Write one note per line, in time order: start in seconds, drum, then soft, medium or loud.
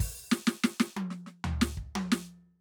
0.00 open hi-hat loud
0.00 kick medium
0.31 snare loud
0.47 snare loud
0.64 snare loud
0.80 snare loud
0.96 high tom loud
1.10 snare soft
1.26 snare soft
1.44 floor tom loud
1.61 snare loud
1.77 kick medium
1.95 high tom loud
2.12 snare loud